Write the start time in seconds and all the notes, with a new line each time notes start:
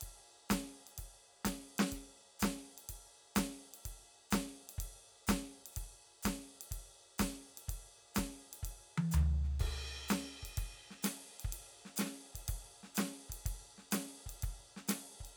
0.01 kick, ride
0.49 kick, snare, hi-hat pedal, ride
0.87 ride
0.98 kick, ride
1.45 kick, snare, hi-hat pedal, ride
1.78 snare, ride
1.92 kick, ride
2.39 kick, snare, hi-hat pedal, ride
2.78 ride
2.89 kick, ride
3.35 kick, snare, hi-hat pedal, ride
3.74 ride
3.83 kick, hi-hat pedal, ride
4.30 kick, snare, hi-hat pedal, ride
4.69 ride
4.78 kick, hi-hat pedal, ride
5.27 kick, snare, hi-hat pedal, ride
5.66 ride
5.72 hi-hat pedal
5.76 kick, ride
6.23 kick, snare, hi-hat pedal, ride
6.61 ride
6.71 kick, ride
7.18 kick, snare, hi-hat pedal, ride
7.57 ride
7.68 kick, ride
8.15 kick, snare, hi-hat pedal, ride
8.53 ride
8.63 kick, ride
8.97 high tom
9.11 floor tom, hi-hat pedal
9.44 snare
9.48 snare
9.53 snare
9.59 kick, ride
10.08 snare, hi-hat pedal, ride
10.43 kick, ride
10.57 kick, ride
10.90 snare
11.03 snare, hi-hat pedal, ride
11.39 ride
11.44 kick
11.52 ride
11.85 snare
11.96 snare, hi-hat pedal, ride
12.04 snare
12.35 kick, ride
12.45 kick, hi-hat pedal, ride
12.83 snare
12.95 snare, hi-hat pedal, ride
13.03 snare
13.29 kick, ride
13.46 kick, ride
13.78 snare
13.91 snare, hi-hat pedal, ride
14.26 kick, ride
14.42 kick, ride
14.76 snare
14.88 snare, hi-hat pedal, ride
15.20 kick
15.25 ride